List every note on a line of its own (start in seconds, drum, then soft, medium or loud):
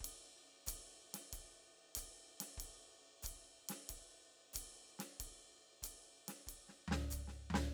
0.01 kick soft
0.05 ride medium
0.67 kick soft
0.67 hi-hat pedal medium
0.67 ride medium
1.14 snare soft
1.14 ride medium
1.33 kick soft
1.33 ride medium
1.96 kick soft
1.96 hi-hat pedal medium
1.96 ride medium
2.40 snare soft
2.40 ride medium
2.58 kick soft
2.58 ride medium
3.23 kick soft
3.23 hi-hat pedal medium
3.23 ride medium
3.69 snare soft
3.69 ride medium
3.90 kick soft
3.90 ride medium
4.54 kick soft
4.54 hi-hat pedal medium
4.54 ride medium
4.99 snare soft
4.99 ride medium
5.20 kick soft
5.20 ride medium
5.83 kick soft
5.83 hi-hat pedal medium
5.83 ride medium
6.28 snare soft
6.28 ride medium
6.47 kick soft
6.47 ride medium
6.69 snare soft
6.88 snare medium
6.88 floor tom medium
7.11 kick soft
7.11 hi-hat pedal medium
7.11 ride medium
7.28 snare soft
7.51 floor tom medium
7.55 snare medium